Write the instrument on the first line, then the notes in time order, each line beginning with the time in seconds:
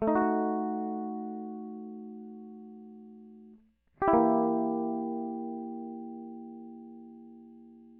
electric guitar
0.02 A3
0.08 D#4
0.15 F#4
4.02 G4
4.08 E4
4.14 A#3
4.19 E2
4.28 E3